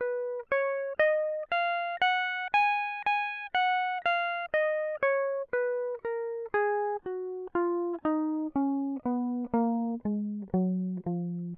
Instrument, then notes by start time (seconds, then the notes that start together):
electric guitar
0.01 B4
0.52 C#5
1.00 D#5
1.52 F5
2.02 F#5
2.55 G#5
3.07 G#5
3.55 F#5
4.06 F5
4.54 D#5
5.03 C#5
5.54 B4
6.05 A#4
6.55 G#4
7.07 F#4
7.56 F4
8.06 D#4
8.57 C#4
9.07 B3
9.55 A#3
10.07 G#3
10.55 F#3
11.08 F3